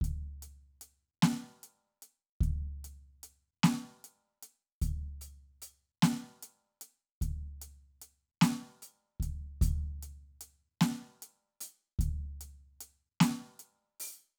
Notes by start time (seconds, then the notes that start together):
0.01 kick, closed hi-hat
0.42 closed hi-hat
0.81 closed hi-hat
1.22 snare, closed hi-hat
1.63 closed hi-hat
2.02 closed hi-hat
2.41 kick, closed hi-hat
2.84 closed hi-hat
3.23 closed hi-hat
3.63 snare, closed hi-hat
4.04 closed hi-hat
4.42 closed hi-hat
4.82 closed hi-hat, kick
5.21 closed hi-hat
5.62 closed hi-hat
6.02 closed hi-hat, snare
6.42 closed hi-hat
6.81 closed hi-hat
7.21 kick, closed hi-hat
7.62 closed hi-hat
8.02 closed hi-hat
8.41 closed hi-hat, snare
8.58 snare
8.82 closed hi-hat
9.20 kick, closed hi-hat
9.61 closed hi-hat, kick
10.03 closed hi-hat
10.41 closed hi-hat
10.81 snare, closed hi-hat
11.22 closed hi-hat
11.61 closed hi-hat
11.99 kick, closed hi-hat
12.41 closed hi-hat
12.80 closed hi-hat
13.20 closed hi-hat, snare
13.59 closed hi-hat
14.00 open hi-hat